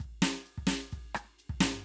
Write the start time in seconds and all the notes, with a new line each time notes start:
0.00 kick, ride
0.22 snare, ride
0.46 ride
0.58 kick
0.67 snare, ride
0.92 kick, ride
1.15 cross-stick, ride
1.25 cross-stick
1.39 ride
1.49 kick
1.61 snare, floor tom